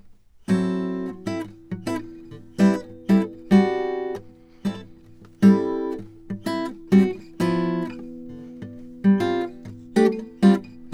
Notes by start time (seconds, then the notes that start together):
0.49 F#3 C4 E4 A4
1.28 C4 E4 A4
1.72 F#3
1.87 C4 E4 A4
2.60 G3 C4 E4 B4
3.10 G3 C4 E4 A4
3.52 G3 C4 F#4 A4
4.66 G3 C4 E4 A4
5.43 G3 C4 E4 A4
6.47 C4 E4
6.93 G3 C4 F#4
7.41 F3 B3 E4
9.05 G3
9.21 C4 F4
9.97 A3 D4 G4
10.43 G3 C4 F4